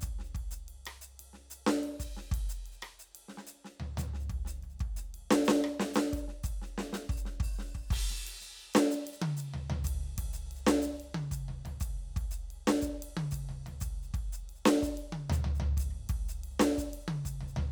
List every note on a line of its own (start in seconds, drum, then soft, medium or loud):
0.01 kick medium
0.01 hi-hat pedal medium
0.01 ride soft
0.19 snare soft
0.24 hi-hat pedal soft
0.35 kick medium
0.35 ride soft
0.51 snare soft
0.51 hi-hat pedal medium
0.68 ride soft
0.86 cross-stick medium
0.86 ride medium
1.01 hi-hat pedal medium
1.19 ride medium
1.33 snare soft
1.50 hi-hat pedal medium
1.50 ride medium
1.67 snare loud
1.83 crash soft
2.00 kick soft
2.00 hi-hat pedal medium
2.00 crash soft
2.17 snare soft
2.21 hi-hat pedal soft
2.32 kick medium
2.32 ride medium
2.49 hi-hat pedal medium
2.66 ride soft
2.72 hi-hat pedal soft
2.82 cross-stick medium
2.82 ride soft
2.99 hi-hat pedal medium
3.15 ride medium
3.28 snare soft
3.37 snare soft
3.47 hi-hat pedal medium
3.47 ride soft
3.65 snare soft
3.80 floor tom medium
3.97 floor tom loud
3.97 hi-hat pedal medium
4.14 snare soft
4.20 hi-hat pedal soft
4.30 kick medium
4.30 ride soft
4.45 snare soft
4.45 hi-hat pedal medium
4.63 kick soft
4.63 ride soft
4.70 hi-hat pedal soft
4.80 kick medium
4.80 ride soft
4.96 snare soft
4.96 hi-hat pedal medium
5.14 ride soft
5.31 snare loud
5.45 snare loud
5.45 hi-hat pedal medium
5.64 cross-stick medium
5.80 snare loud
5.94 snare loud
5.94 hi-hat pedal medium
6.13 kick soft
6.13 hi-hat pedal soft
6.13 ride medium
6.28 snare soft
6.44 kick medium
6.44 hi-hat pedal medium
6.44 ride medium
6.62 snare soft
6.62 hi-hat pedal soft
6.78 snare medium
6.93 snare medium
6.93 hi-hat pedal medium
7.09 open hi-hat medium
7.09 kick medium
7.17 hi-hat pedal medium
7.25 snare soft
7.40 open hi-hat medium
7.40 kick medium
7.59 snare soft
7.75 kick soft
7.90 kick medium
7.90 crash loud
8.10 snare soft
8.27 ride medium
8.41 snare soft
8.41 hi-hat pedal soft
8.60 ride soft
8.74 snare loud
8.74 ride soft
8.91 hi-hat pedal medium
9.07 ride medium
9.13 hi-hat pedal soft
9.22 high tom loud
9.37 hi-hat pedal medium
9.37 ride soft
9.54 floor tom medium
9.70 floor tom loud
9.84 kick medium
9.84 hi-hat pedal medium
9.84 ride medium
10.18 kick medium
10.18 ride medium
10.33 hi-hat pedal medium
10.51 ride soft
10.56 hi-hat pedal soft
10.67 snare loud
10.82 kick soft
10.82 hi-hat pedal medium
11.00 ride soft
11.15 high tom loud
11.31 kick soft
11.31 hi-hat pedal medium
11.31 ride soft
11.48 floor tom soft
11.65 floor tom medium
11.65 ride soft
11.80 kick medium
11.80 hi-hat pedal medium
11.80 ride medium
12.16 kick medium
12.16 ride soft
12.31 hi-hat pedal medium
12.50 ride soft
12.67 snare loud
12.67 ride medium
12.82 kick soft
12.82 hi-hat pedal medium
13.02 ride medium
13.17 high tom loud
13.31 kick soft
13.31 hi-hat pedal medium
13.31 ride medium
13.49 floor tom soft
13.66 floor tom medium
13.66 ride soft
13.81 kick medium
13.81 hi-hat pedal medium
13.81 ride medium
14.03 hi-hat pedal soft
14.14 kick medium
14.14 ride soft
14.32 hi-hat pedal medium
14.49 ride soft
14.56 hi-hat pedal soft
14.66 snare loud
14.66 ride medium
14.82 kick soft
14.82 hi-hat pedal medium
14.97 ride soft
15.12 high tom medium
15.30 floor tom loud
15.30 hi-hat pedal medium
15.44 floor tom medium
15.55 hi-hat pedal soft
15.60 floor tom loud
15.77 kick soft
15.77 hi-hat pedal medium
15.77 ride medium
15.91 cross-stick soft
16.09 kick medium
16.09 ride medium
16.29 hi-hat pedal medium
16.44 ride soft
16.51 hi-hat pedal soft
16.60 snare loud
16.60 ride medium
16.78 kick soft
16.78 hi-hat pedal medium
16.94 ride medium
17.00 hi-hat pedal soft
17.08 high tom loud
17.25 kick soft
17.25 hi-hat pedal medium
17.25 ride medium
17.41 floor tom medium
17.48 hi-hat pedal soft
17.56 floor tom loud